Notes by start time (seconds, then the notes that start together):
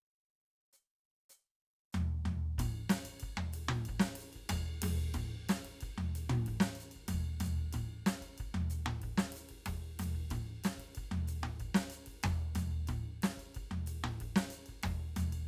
0.73 hi-hat pedal
1.29 hi-hat pedal
1.92 floor tom, hi-hat pedal
2.25 floor tom
2.58 kick, mid tom, ride bell
2.78 kick
2.89 snare, hi-hat pedal, ride bell
3.04 kick, ride bell
3.20 kick, ride bell
3.37 floor tom
3.52 hi-hat pedal, ride
3.68 kick, mid tom
3.85 kick, ride bell
3.99 snare
4.10 snare
4.15 ride
4.19 hi-hat pedal
4.33 kick, ride bell
4.49 kick, ride bell, floor tom
4.82 floor tom, hi-hat pedal, ride
4.97 kick
5.14 kick, mid tom, ride bell
5.49 snare, hi-hat pedal, ride bell
5.63 kick, ride
5.81 kick, ride bell
5.98 floor tom
6.15 hi-hat pedal, ride
6.29 kick, mid tom
6.46 kick, ride
6.60 snare
6.75 ride bell
6.80 hi-hat pedal
6.91 ride bell
6.96 kick
7.08 floor tom, ride bell
7.12 kick
7.40 floor tom, hi-hat pedal, ride bell
7.58 kick
7.73 kick, mid tom, ride bell
8.06 snare, hi-hat pedal, ride bell
8.21 kick, ride bell
8.38 kick, ride bell
8.54 floor tom
8.70 hi-hat pedal, ride
8.85 kick, mid tom
9.02 kick, ride
9.17 snare
9.32 hi-hat pedal, ride
9.49 kick, ride
9.66 kick, ride, floor tom
9.99 floor tom, hi-hat pedal, ride
10.14 kick
10.30 kick, mid tom, ride bell
10.63 snare, hi-hat pedal, ride bell
10.77 kick, ride
10.95 kick, ride bell
11.11 floor tom
11.27 hi-hat pedal, ride
11.42 kick, mid tom
11.60 kick, ride bell
11.74 snare
11.90 hi-hat pedal, ride bell
12.06 kick, ride
12.23 kick, ride bell, floor tom
12.55 floor tom, hi-hat pedal, ride bell
12.71 kick
12.87 kick, mid tom, ride bell
13.22 snare, hi-hat pedal, ride
13.37 kick, ride bell
13.54 kick, ride bell
13.71 floor tom
13.86 hi-hat pedal, ride
14.03 kick, mid tom
14.20 kick, ride
14.36 snare
14.50 hi-hat pedal, ride bell
14.66 kick, ride bell
14.83 kick, ride, floor tom
15.16 floor tom, hi-hat pedal, ride bell
15.32 kick, ride bell